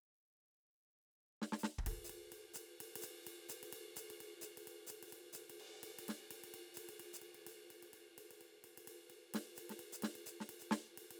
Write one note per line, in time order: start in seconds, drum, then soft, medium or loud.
1.42 snare soft
1.52 snare soft
1.59 hi-hat pedal medium
1.63 snare medium
1.78 kick soft
1.86 kick soft
1.86 ride medium
2.04 hi-hat pedal medium
2.09 ride medium
2.32 ride soft
2.54 hi-hat pedal medium
2.54 ride medium
2.80 ride medium
2.96 ride medium
3.01 hi-hat pedal medium
3.01 ride medium
3.23 hi-hat pedal soft
3.23 ride medium
3.49 hi-hat pedal medium
3.49 ride medium
3.63 ride medium
3.70 hi-hat pedal soft
3.70 ride medium
3.96 hi-hat pedal medium
3.96 ride medium
4.10 ride soft
4.20 ride soft
4.41 hi-hat pedal medium
4.41 ride soft
4.57 ride soft
4.62 hi-hat pedal soft
4.67 ride medium
4.87 hi-hat pedal medium
4.87 ride medium
5.03 ride soft
5.08 hi-hat pedal soft
5.12 ride medium
5.33 hi-hat pedal medium
5.33 ride medium
5.50 ride soft
5.60 ride soft
5.83 ride medium
5.99 ride medium
6.08 snare soft
6.08 ride medium
6.31 ride medium
6.44 ride medium
6.54 ride medium
6.74 hi-hat pedal soft
6.74 ride medium
6.89 ride soft
7.00 ride medium
7.13 hi-hat pedal medium
7.22 ride soft
7.34 ride soft
7.46 hi-hat pedal soft
7.46 ride medium
7.70 ride soft
7.83 ride soft
7.93 ride soft
8.18 ride soft
8.31 ride soft
8.41 ride soft
8.64 ride soft
8.77 ride soft
8.87 ride medium
9.10 ride soft
9.34 snare medium
9.34 ride medium
9.55 hi-hat pedal soft
9.55 ride medium
9.69 snare soft
9.69 ride soft
9.79 ride soft
9.92 hi-hat pedal medium
10.02 snare medium
10.02 ride medium
10.15 ride soft
10.26 hi-hat pedal medium
10.26 ride soft
10.40 snare soft
10.49 ride medium
10.59 hi-hat pedal soft
10.59 ride soft
10.71 snare medium
10.71 ride soft
10.97 ride medium
11.11 ride soft